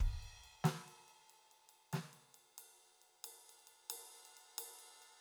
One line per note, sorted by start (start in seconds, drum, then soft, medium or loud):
0.00 kick medium
0.00 ride soft
0.22 ride soft
0.43 ride soft
0.64 snare loud
0.64 ride medium
0.88 ride soft
1.08 ride soft
1.29 ride soft
1.51 ride soft
1.69 ride soft
1.93 snare medium
1.93 ride medium
2.13 ride soft
2.34 ride soft
2.58 ride medium
2.80 ride soft
3.01 ride soft
3.24 ride medium
3.49 ride soft
3.59 ride soft
3.67 ride soft
3.90 ride loud
4.15 ride soft
4.25 ride soft
4.37 ride soft
4.58 ride loud
4.79 ride soft
5.02 ride soft